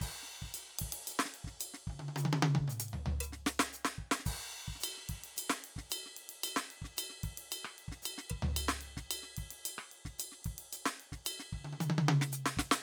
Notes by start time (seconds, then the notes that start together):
0.01 kick, hi-hat pedal, crash
0.07 kick
0.23 snare
0.42 kick, snare
0.47 kick
0.54 hi-hat pedal, ride bell
0.79 kick, ride
0.87 kick
0.92 snare, ride
1.07 hi-hat pedal, ride bell
1.19 snare
1.25 snare
1.34 ride
1.44 kick, snare
1.49 kick
1.60 hi-hat pedal, ride bell
1.74 snare
1.87 kick, high tom
1.93 kick
1.99 high tom
2.08 high tom
2.16 hi-hat pedal, high tom
2.25 high tom
2.33 high tom
2.42 high tom
2.55 kick, high tom
2.68 hi-hat pedal, mid tom
2.80 closed hi-hat
2.88 ride
2.93 floor tom
3.06 floor tom
3.20 hi-hat pedal, percussion
3.32 snare
3.45 snare, hi-hat pedal
3.59 snare
3.73 hi-hat pedal
3.85 snare
3.98 kick
4.11 snare
4.20 snare
4.25 kick, hi-hat pedal, crash
4.34 cross-stick
4.39 kick
4.68 kick
4.75 snare
4.80 hi-hat pedal, ride bell
4.97 snare
5.09 kick, ride
5.15 kick
5.21 snare, ride
5.25 snare
5.36 hi-hat pedal, ride bell
5.50 snare
5.64 ride
5.76 kick, snare
5.90 hi-hat pedal, ride bell
6.06 snare
6.12 snare
6.17 ride
6.29 ride
6.43 hi-hat pedal, ride bell
6.56 snare
6.70 ride
6.82 kick, snare
6.97 hi-hat pedal, ride bell
7.10 snare
7.23 kick, ride
7.33 kick, snare
7.37 ride
7.51 hi-hat pedal, ride bell
7.65 cross-stick
7.78 ride
7.88 kick, snare
8.02 hi-hat pedal, ride bell
8.18 snare
8.30 kick, percussion
8.37 kick
8.42 floor tom
8.56 hi-hat pedal, ride bell
8.68 snare
8.81 ride
8.97 kick, snare
9.11 hi-hat pedal, ride bell
9.23 snare
9.37 kick, ride
9.43 kick
9.51 snare, ride
9.65 hi-hat pedal, ride bell
9.78 cross-stick
9.91 ride
10.05 kick, snare
10.19 hi-hat pedal, ride bell
10.32 snare
10.41 snare, ride
10.46 kick, snare
10.51 snare
10.55 kick, ride
10.72 hi-hat pedal, ride bell
10.85 snare
11.00 ride
11.12 kick, snare
11.25 hi-hat pedal, ride bell
11.39 snare
11.52 kick, high tom
11.64 high tom
11.73 high tom
11.80 hi-hat pedal, high tom
11.90 high tom
11.98 high tom
12.08 high tom
12.21 snare
12.32 closed hi-hat, hi-hat pedal
12.46 snare
12.57 kick, snare
12.71 snare